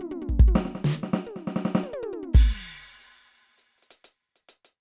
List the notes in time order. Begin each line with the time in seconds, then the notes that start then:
0.01 floor tom
0.12 floor tom
0.22 floor tom
0.30 kick
0.40 kick
0.48 floor tom
0.56 snare
0.66 snare
0.76 snare
0.85 snare
1.04 snare
1.14 snare
1.27 mid tom
1.37 snare
1.48 snare
1.57 snare
1.66 snare
1.76 snare
1.84 high tom
1.94 high tom
2.03 mid tom
2.23 floor tom
2.34 kick, crash
3.01 hi-hat pedal
3.59 hi-hat pedal
3.79 closed hi-hat
3.83 closed hi-hat
3.92 closed hi-hat
4.05 closed hi-hat
4.37 closed hi-hat
4.50 closed hi-hat
4.66 closed hi-hat